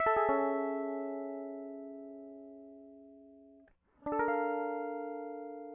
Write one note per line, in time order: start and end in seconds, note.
0.00 3.66 E5
0.07 2.21 A4
0.17 3.63 G#4
0.29 3.67 C#4
3.93 3.99 A#4
4.06 5.75 D4
4.12 5.75 A4
4.19 5.75 A#4
4.28 5.75 F5